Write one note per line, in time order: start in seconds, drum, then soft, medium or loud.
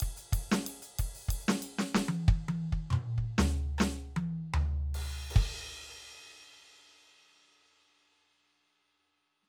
0.01 kick medium
0.01 ride loud
0.18 open hi-hat medium
0.33 kick medium
0.33 ride loud
0.52 snare loud
0.52 hi-hat pedal medium
0.67 ride loud
0.83 closed hi-hat medium
0.99 kick medium
0.99 ride loud
1.15 open hi-hat medium
1.29 kick medium
1.29 ride loud
1.41 hi-hat pedal soft
1.49 snare loud
1.63 ride bell medium
1.79 snare loud
1.95 kick soft
1.95 snare loud
2.09 high tom loud
2.29 kick loud
2.49 high tom loud
2.73 kick medium
2.91 mid tom loud
2.93 mid tom loud
3.18 kick medium
3.39 snare loud
3.39 floor tom loud
3.79 cross-stick medium
3.79 snare loud
4.17 high tom loud
4.54 floor tom loud
4.95 crash medium
5.31 ride loud
5.36 kick loud
5.60 mid tom soft
5.65 mid tom soft
9.43 snare soft